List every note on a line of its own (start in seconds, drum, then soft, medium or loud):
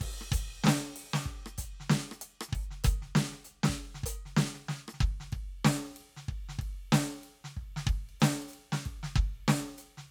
0.01 kick medium
0.01 crash medium
0.21 cross-stick medium
0.32 closed hi-hat loud
0.32 kick loud
0.64 snare loud
0.67 snare loud
0.96 open hi-hat medium
1.14 snare medium
1.26 kick medium
1.46 cross-stick medium
1.58 closed hi-hat medium
1.58 kick medium
1.80 snare soft
1.90 snare loud
2.12 cross-stick medium
2.22 closed hi-hat medium
2.41 cross-stick medium
2.49 snare soft
2.53 kick loud
2.53 open hi-hat soft
2.64 hi-hat pedal soft
2.71 snare soft
2.84 closed hi-hat loud
2.84 kick loud
3.02 snare soft
3.07 kick soft
3.15 snare loud
3.32 snare soft
3.45 closed hi-hat medium
3.64 snare loud
3.69 kick medium
3.75 closed hi-hat soft
3.75 hi-hat pedal soft
3.95 snare soft
4.04 closed hi-hat loud
4.04 kick medium
4.26 kick soft
4.26 snare soft
4.37 snare loud
4.54 snare soft
4.69 snare medium
4.88 cross-stick medium
4.94 snare soft
5.01 kick loud
5.01 ride soft
5.20 snare soft
5.32 kick medium
5.32 ride soft
5.65 snare loud
5.65 hi-hat pedal soft
5.96 ride medium
6.17 snare soft
6.29 kick medium
6.49 snare medium
6.59 kick medium
6.59 ride soft
6.93 snare loud
6.93 hi-hat pedal medium
7.24 ride soft
7.44 snare medium
7.57 kick medium
7.76 snare medium
7.87 kick loud
7.87 ride soft
8.09 ride bell soft
8.20 snare loud
8.20 hi-hat pedal medium
8.42 ride soft
8.49 hi-hat pedal soft
8.54 ride soft
8.72 snare loud
8.86 kick medium
8.86 ride soft
9.03 snare medium
9.16 kick loud
9.16 ride bell soft
9.48 snare loud
9.48 hi-hat pedal soft
9.78 hi-hat pedal medium
9.78 ride medium
9.98 snare soft